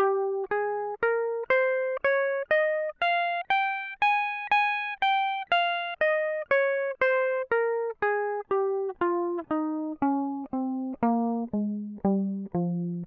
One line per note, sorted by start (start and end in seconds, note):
0.00 0.49 G4
0.51 0.98 G#4
1.03 1.47 A#4
1.50 2.00 C5
2.05 2.46 C#5
2.51 2.92 D#5
3.02 3.45 F5
3.50 3.97 G5
4.02 4.51 G#5
4.52 4.99 G#5
5.02 5.45 G5
5.52 5.97 F5
6.01 6.45 D#5
6.52 6.96 C#5
7.02 7.45 C5
7.52 7.93 A#4
8.03 8.44 G#4
8.51 8.93 G4
9.02 9.44 F4
9.51 9.97 D#4
10.02 10.49 C#4
10.54 10.97 C4
11.03 11.47 A#3
11.54 12.01 G#3
12.05 12.50 G3
12.56 13.07 F3